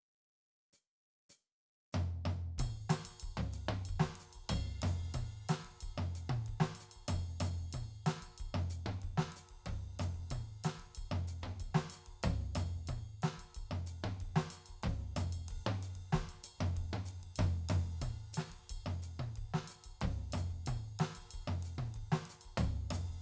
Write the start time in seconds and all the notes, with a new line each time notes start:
0.73 hi-hat pedal
1.29 hi-hat pedal
1.92 floor tom, hi-hat pedal
2.25 floor tom
2.58 kick, mid tom, ride bell
2.78 kick
2.89 snare, hi-hat pedal, ride bell
3.04 kick, ride bell
3.20 kick, ride bell
3.37 floor tom
3.52 hi-hat pedal, ride
3.68 kick, mid tom
3.85 kick, ride bell
3.99 snare
4.10 snare
4.15 ride
4.19 hi-hat pedal
4.33 kick, ride bell
4.49 kick, ride bell, floor tom
4.82 floor tom, hi-hat pedal, ride
4.97 kick
5.14 kick, mid tom, ride bell
5.49 snare, hi-hat pedal, ride bell
5.63 kick, ride
5.81 kick, ride bell
5.98 floor tom
6.15 hi-hat pedal, ride
6.29 kick, mid tom
6.46 kick, ride
6.60 snare
6.75 ride bell
6.80 hi-hat pedal
6.91 ride bell
6.96 kick
7.08 floor tom, ride bell
7.12 kick
7.40 floor tom, hi-hat pedal, ride bell
7.58 kick
7.73 kick, mid tom, ride bell
8.06 snare, hi-hat pedal, ride bell
8.21 kick, ride bell
8.38 kick, ride bell
8.54 floor tom
8.70 hi-hat pedal, ride
8.85 kick, mid tom
9.02 kick, ride
9.17 snare
9.32 hi-hat pedal, ride
9.49 kick, ride
9.66 kick, ride, floor tom
9.99 floor tom, hi-hat pedal, ride
10.14 kick
10.30 kick, mid tom, ride bell
10.63 snare, hi-hat pedal, ride bell
10.77 kick, ride
10.95 kick, ride bell
11.11 floor tom
11.27 hi-hat pedal, ride
11.42 kick, mid tom
11.60 kick, ride bell
11.74 snare
11.90 hi-hat pedal, ride bell
12.06 kick, ride
12.23 kick, ride bell, floor tom
12.55 floor tom, hi-hat pedal, ride bell
12.71 kick
12.87 kick, mid tom, ride bell
13.22 snare, hi-hat pedal, ride
13.37 kick, ride bell
13.54 kick, ride bell
13.71 floor tom
13.86 hi-hat pedal, ride
14.03 kick, mid tom
14.20 kick, ride
14.36 snare
14.50 hi-hat pedal, ride bell
14.66 kick, ride bell
14.83 kick, ride, floor tom
15.16 floor tom, hi-hat pedal, ride bell
15.32 kick, ride bell
15.48 kick, ride
15.66 mid tom
15.82 hi-hat pedal, ride
15.95 kick, ride
16.12 kick, snare
16.29 ride bell
16.43 hi-hat pedal, ride bell
16.58 kick, floor tom
16.76 kick, ride
16.93 mid tom
17.05 hi-hat pedal, ride
17.20 kick, ride
17.36 kick, floor tom, ride bell
17.69 floor tom, hi-hat pedal, ride
17.82 kick
18.01 kick, mid tom, ride bell
18.33 hi-hat pedal, ride bell
18.37 snare
18.49 kick, ride
18.69 kick, ride bell
18.86 floor tom
19.02 hi-hat pedal, ride
19.19 kick, mid tom
19.35 kick, ride
19.54 snare
19.67 hi-hat pedal, ride bell
19.84 kick, ride bell
20.01 kick, ride, floor tom
20.32 floor tom, ride bell
20.37 hi-hat pedal
20.50 kick
20.66 kick, mid tom, ride bell
20.99 snare, hi-hat pedal, ride
21.15 kick, ride bell
21.31 kick, ride bell
21.47 floor tom
21.62 hi-hat pedal, ride
21.78 kick, mid tom
21.94 kick, ride
22.12 snare
22.25 hi-hat pedal, ride
22.41 kick, ride bell
22.57 ride bell, floor tom
22.63 kick
22.90 floor tom, hi-hat pedal, ride
23.08 kick